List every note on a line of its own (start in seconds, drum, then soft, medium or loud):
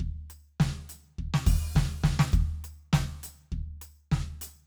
0.01 kick medium
0.01 crash soft
0.01 ride soft
0.31 percussion medium
0.61 kick medium
0.61 snare loud
0.90 percussion medium
1.19 kick medium
1.35 snare loud
1.47 kick loud
1.47 percussion loud
1.76 kick medium
1.76 snare loud
2.05 kick medium
2.05 snare loud
2.20 snare loud
2.33 kick loud
2.33 percussion medium
2.65 percussion medium
2.94 kick medium
2.94 snare loud
3.24 percussion loud
3.53 kick medium
3.82 percussion loud
4.12 kick medium
4.12 snare loud
4.40 kick soft
4.40 percussion loud